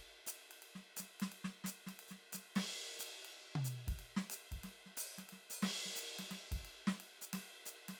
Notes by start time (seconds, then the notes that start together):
0.26 hi-hat pedal, ride
0.51 ride
0.62 ride
0.75 snare
0.96 snare, hi-hat pedal, ride
1.20 snare, ride
1.32 ride
1.44 snare
1.64 snare, hi-hat pedal, ride
1.86 snare, hi-hat pedal, ride
1.99 ride
2.08 snare, hi-hat pedal
2.32 snare, hi-hat pedal, ride
2.55 snare, ride
2.99 hi-hat pedal, ride
3.25 ride
3.55 high tom
3.64 hi-hat pedal, ride
3.87 kick, ride
3.99 ride
4.16 snare
4.30 hi-hat pedal, ride
4.51 kick, ride
4.63 snare, ride
4.86 snare
4.97 hi-hat pedal, ride
5.18 snare, ride
5.29 snare, ride
5.50 hi-hat pedal
5.62 snare, ride
5.85 snare
5.95 hi-hat pedal, ride
6.19 snare, ride
6.31 snare, ride
6.51 kick, ride
6.65 ride
6.87 snare
7.00 ride
7.21 hi-hat pedal
7.33 snare, ride
7.66 hi-hat pedal, ride
7.88 snare, ride